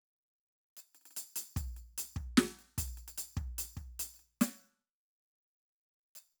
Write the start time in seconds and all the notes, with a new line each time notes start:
0.77 percussion
0.95 percussion
1.01 percussion
1.06 percussion
1.11 percussion
1.17 percussion
1.36 percussion
1.56 kick, percussion
1.77 percussion
1.98 percussion
2.16 kick, percussion
2.37 snare
2.59 percussion
2.78 kick, percussion
2.88 percussion
2.97 percussion
3.08 percussion
3.18 percussion
3.37 kick, percussion
3.58 percussion
3.77 kick, percussion
3.99 percussion
4.14 percussion
4.19 percussion
4.41 snare, percussion
6.15 percussion